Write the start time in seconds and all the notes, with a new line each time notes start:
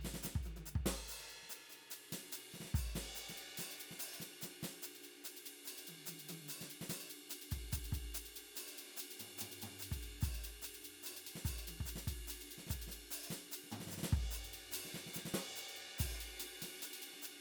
0.01 snare, hi-hat pedal
0.14 snare
0.23 snare, hi-hat pedal
0.35 kick
0.43 hi-hat pedal, high tom
0.56 high tom
0.66 hi-hat pedal
0.75 kick
0.86 snare, hi-hat pedal, crash
1.08 hi-hat pedal, ride
1.19 ride
1.29 hi-hat pedal, ride
1.43 snare
1.49 hi-hat pedal, ride
1.69 hi-hat pedal, ride
1.81 snare
1.90 hi-hat pedal, ride
2.10 snare, hi-hat pedal, ride
2.32 hi-hat pedal, ride
2.52 snare, hi-hat pedal
2.60 snare
2.65 snare
2.74 kick, hi-hat pedal
2.95 snare, hi-hat pedal, ride
3.15 hi-hat pedal, ride
3.29 snare, ride
3.35 hi-hat pedal, ride
3.57 snare, hi-hat pedal, ride
3.71 ride
3.78 hi-hat pedal, ride
3.91 snare
3.99 hi-hat pedal, ride
4.13 ride
4.19 snare, hi-hat pedal, ride
4.41 snare, hi-hat pedal, ride
4.61 snare, hi-hat pedal, ride
4.82 hi-hat pedal, ride
4.95 ride
5.02 hi-hat pedal, ride
5.24 hi-hat pedal, ride
5.36 ride
5.44 hi-hat pedal, ride
5.65 hi-hat pedal, ride
5.78 ride
5.83 hi-hat pedal, ride
5.88 high tom
6.06 hi-hat pedal, high tom, ride
6.19 ride
6.26 hi-hat pedal, high tom, ride
6.48 hi-hat pedal, ride
6.60 snare, ride
6.67 hi-hat pedal, ride
6.81 snare
6.89 snare, hi-hat pedal, ride
7.00 ride
7.08 hi-hat pedal, ride
7.30 hi-hat pedal, ride
7.41 ride
7.51 kick, ride
7.72 kick, hi-hat pedal, ride
7.84 ride
7.92 kick, hi-hat pedal, ride
8.14 hi-hat pedal, ride
8.25 ride
8.34 hi-hat pedal, ride
8.55 hi-hat pedal, ride
8.68 ride
8.78 ride
8.97 hi-hat pedal, ride
9.10 ride
9.15 hi-hat pedal, ride
9.20 floor tom
9.38 floor tom, hi-hat pedal, ride
9.51 ride
9.58 hi-hat pedal, ride
9.62 floor tom
9.79 hi-hat pedal, ride
9.91 kick, ride
9.98 hi-hat pedal
10.02 ride
10.21 kick, hi-hat pedal, ride
10.34 ride
10.44 ride
10.62 hi-hat pedal, ride
10.74 ride
10.82 hi-hat pedal, ride
11.03 hi-hat pedal, ride
11.16 ride
11.22 hi-hat pedal
11.26 ride
11.35 snare
11.45 kick, hi-hat pedal, ride
11.58 ride
11.64 hi-hat pedal, high tom, ride
11.80 kick
11.86 hi-hat pedal, ride
11.95 snare, ride
12.05 kick, hi-hat pedal, ride
12.27 hi-hat pedal, ride
12.41 ride
12.51 ride
12.58 snare
12.66 kick, snare, hi-hat pedal
12.71 ride
12.81 ride
12.87 snare, hi-hat pedal, ride
12.97 snare
13.11 hi-hat pedal, ride
13.23 ride
13.30 snare, hi-hat pedal, ride
13.51 hi-hat pedal, ride
13.64 snare
13.70 floor tom, hi-hat pedal
13.80 snare
13.87 snare, hi-hat pedal
13.92 snare
13.98 snare
14.03 snare
14.09 kick, hi-hat pedal
14.13 ride
14.31 hi-hat pedal, ride
14.44 ride
14.50 hi-hat pedal, ride
14.72 hi-hat pedal, ride
14.85 snare
14.94 snare
15.06 snare
15.14 snare, hi-hat pedal
15.25 snare
15.33 snare, hi-hat pedal, ride
15.56 hi-hat pedal, ride
15.68 ride
15.76 ride
15.98 kick, hi-hat pedal, ride
16.17 hi-hat pedal, ride
16.39 hi-hat pedal, ride
16.59 snare, hi-hat pedal, ride
16.82 hi-hat pedal, ride
16.93 ride
17.02 ride
17.13 snare
17.22 hi-hat pedal, ride